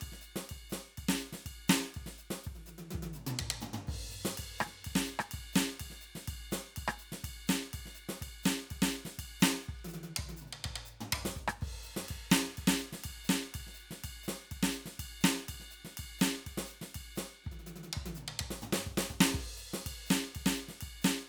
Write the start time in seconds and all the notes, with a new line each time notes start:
0.01 kick, ride bell
0.08 kick
0.12 snare
0.21 hi-hat pedal, ride
0.36 snare
0.49 kick, ride bell
0.57 kick
0.69 snare, hi-hat pedal
0.97 kick, ride bell
1.04 kick
1.08 snare
1.18 hi-hat pedal, ride
1.32 snare
1.46 kick, ride bell
1.68 snare, hi-hat pedal
1.76 snare
1.94 kick, ride bell
2.02 kick, snare
2.18 hi-hat pedal, ride
2.30 snare
2.44 kick, ride
2.53 kick, high tom
2.66 hi-hat pedal, high tom
2.78 high tom
2.91 kick, high tom
3.01 kick, high tom
3.13 hi-hat pedal, mid tom
3.27 mid tom
3.39 kick, mid tom
3.47 kick, mid tom
3.60 floor tom, hi-hat pedal
3.73 floor tom
3.87 kick, crash
3.95 kick
4.00 kick
4.11 hi-hat pedal
4.25 snare
4.37 kick, ride bell
4.58 cross-stick, hi-hat pedal
4.66 snare
4.80 hi-hat pedal
4.84 kick, ride bell
4.95 snare
5.05 hi-hat pedal, ride
5.19 cross-stick
5.31 kick, ride bell
5.40 kick
5.53 snare, hi-hat pedal
5.75 hi-hat pedal
5.80 kick, ride bell
5.86 kick, snare
6.01 hi-hat pedal, ride
6.15 snare
6.28 kick, ride bell
6.35 kick
6.51 snare, hi-hat pedal
6.76 kick, ride bell
6.83 kick
6.88 cross-stick
6.99 hi-hat pedal, ride
7.12 snare
7.24 kick, ride bell
7.30 kick
7.47 snare, hi-hat pedal
7.73 kick, ride bell
7.80 kick
7.85 snare
7.94 hi-hat pedal, ride
8.09 snare
8.17 hi-hat pedal
8.21 kick, ride bell
8.27 kick
8.43 snare, hi-hat pedal
8.70 kick, ride bell
8.77 kick
8.82 snare
8.90 hi-hat pedal, ride
9.05 snare
9.18 kick, ride bell
9.24 kick
9.40 snare, hi-hat pedal
9.62 hi-hat pedal
9.68 kick
9.74 kick
9.79 high tom
9.84 hi-hat pedal, high tom
9.93 high tom
10.03 high tom
10.16 kick, high tom
10.25 kick, high tom
10.36 hi-hat pedal
10.41 mid tom
10.47 ride
10.53 mid tom
10.64 kick, mid tom
10.71 kick
10.76 mid tom
10.85 hi-hat pedal
11.01 floor tom
11.12 kick, floor tom
11.19 kick
11.25 snare
11.35 kick, hi-hat pedal
11.48 cross-stick
11.61 kick, crash
11.74 kick
11.83 hi-hat pedal
11.96 snare
12.08 kick, ride bell
12.17 kick
12.30 snare, hi-hat pedal
12.57 kick, ride bell
12.67 snare
12.77 hi-hat pedal, ride
12.92 snare
13.04 kick, ride bell
13.11 kick
13.24 hi-hat pedal
13.29 snare
13.54 kick, ride bell
13.61 kick
13.67 snare
13.74 hi-hat pedal
13.80 ride
13.91 snare
14.04 kick, ride bell
14.23 hi-hat pedal
14.28 snare
14.51 kick, ride bell
14.57 kick
14.63 snare
14.71 hi-hat pedal, ride
14.86 snare
14.94 hi-hat pedal
14.99 kick, ride bell
15.05 kick
15.21 snare, hi-hat pedal
15.43 hi-hat pedal
15.48 kick, ride bell
15.55 kick
15.60 snare
15.70 hi-hat pedal, ride
15.85 snare
15.97 kick, ride bell
16.05 kick
16.19 snare, hi-hat pedal
16.46 kick, ride bell
16.52 kick
16.57 snare
16.66 hi-hat pedal
16.70 ride
16.81 snare
16.94 kick, ride bell
17.01 kick
17.16 snare, hi-hat pedal
17.44 kick, high tom
17.51 kick, high tom
17.59 high tom
17.66 hi-hat pedal, high tom
17.76 high tom
17.83 high tom
17.93 kick, high tom
18.03 kick, high tom
18.15 hi-hat pedal, mid tom
18.28 mid tom
18.39 kick, mid tom
18.47 kick, snare
18.61 floor tom, hi-hat pedal
18.72 snare
18.86 kick, floor tom
18.97 snare
19.09 kick, floor tom, hi-hat pedal
19.20 snare
19.34 kick, crash
19.46 kick
19.57 hi-hat pedal
19.73 snare
19.86 kick, ride bell
19.92 kick
20.06 hi-hat pedal
20.10 snare
20.35 kick, ride bell
20.41 kick
20.46 snare
20.54 hi-hat pedal, ride
20.68 snare
20.81 kick, ride bell
21.02 snare, hi-hat pedal